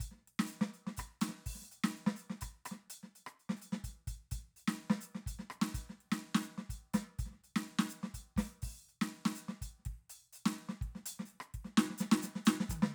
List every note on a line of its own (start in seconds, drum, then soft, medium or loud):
0.01 closed hi-hat medium
0.01 kick soft
0.09 kick soft
0.09 snare soft
0.17 snare soft
0.28 closed hi-hat soft
0.40 snare loud
0.47 hi-hat pedal medium
0.52 closed hi-hat soft
0.61 snare medium
0.74 closed hi-hat soft
0.87 snare medium
0.97 closed hi-hat medium
0.97 kick soft
0.97 cross-stick medium
0.97 hi-hat pedal medium
1.22 closed hi-hat medium
1.22 snare medium
1.29 snare soft
1.46 open hi-hat medium
1.46 kick soft
1.55 snare soft
1.62 snare soft
1.72 closed hi-hat soft
1.84 snare loud
1.97 closed hi-hat soft
2.07 snare medium
2.17 closed hi-hat soft
2.17 hi-hat pedal medium
2.30 snare medium
2.41 closed hi-hat medium
2.41 kick soft
2.41 cross-stick medium
2.66 closed hi-hat medium
2.66 cross-stick medium
2.72 snare soft
2.90 closed hi-hat medium
3.04 snare soft
3.16 closed hi-hat soft
3.27 cross-stick medium
3.40 closed hi-hat soft
3.50 snare medium
3.57 hi-hat pedal soft
3.62 closed hi-hat soft
3.73 snare medium
3.84 closed hi-hat medium
3.84 kick soft
4.08 closed hi-hat medium
4.08 kick soft
4.16 kick soft
4.32 closed hi-hat medium
4.32 kick soft
4.32 snare soft
4.38 snare soft
4.57 open hi-hat soft
4.57 hi-hat pedal soft
4.68 snare loud
4.81 closed hi-hat soft
4.90 snare medium
5.01 closed hi-hat soft
5.01 hi-hat pedal medium
5.15 snare soft
5.27 closed hi-hat medium
5.27 kick soft
5.35 kick soft
5.39 snare soft
5.50 cross-stick medium
5.62 snare loud
5.75 closed hi-hat medium
5.75 kick soft
5.90 snare soft
6.01 closed hi-hat soft
6.12 snare medium
6.24 closed hi-hat soft
6.35 snare loud
6.43 hi-hat pedal soft
6.47 closed hi-hat soft
6.58 snare soft
6.70 closed hi-hat medium
6.70 kick soft
6.94 closed hi-hat medium
6.94 kick soft
6.94 snare medium
7.19 closed hi-hat medium
7.19 kick soft
7.25 kick soft
7.25 snare soft
7.28 kick soft
7.28 snare soft
7.44 closed hi-hat soft
7.56 snare medium
7.68 closed hi-hat soft
7.79 snare loud
7.90 hi-hat pedal medium
8.04 snare medium
8.14 closed hi-hat medium
8.14 kick soft
8.37 open hi-hat medium
8.37 kick soft
8.37 snare medium
8.62 open hi-hat medium
8.62 kick soft
8.62 snare soft
8.73 snare soft
8.89 closed hi-hat soft
9.02 snare medium
9.14 closed hi-hat soft
9.26 snare loud
9.35 closed hi-hat soft
9.35 hi-hat pedal medium
9.49 snare medium
9.62 closed hi-hat medium
9.62 kick soft
9.79 snare soft
9.86 kick soft
9.86 closed hi-hat soft
9.92 kick soft
10.10 open hi-hat medium
10.33 closed hi-hat soft
10.33 hi-hat pedal medium
10.46 snare loud
10.59 closed hi-hat soft
10.69 snare medium
10.82 kick soft
10.82 closed hi-hat soft
10.88 kick soft
10.96 snare soft
11.06 closed hi-hat loud
11.20 snare soft
11.26 hi-hat pedal soft
11.30 closed hi-hat soft
11.41 cross-stick medium
11.54 kick soft
11.54 closed hi-hat soft
11.65 snare soft
11.78 snare loud
11.90 snare soft
11.98 snare medium
11.98 hi-hat pedal medium
12.12 snare loud
12.23 snare soft
12.23 hi-hat pedal loud
12.36 snare medium
12.46 snare loud
12.46 hi-hat pedal medium
12.61 snare medium
12.70 kick soft
12.70 hi-hat pedal medium
12.70 high tom medium
12.83 snare medium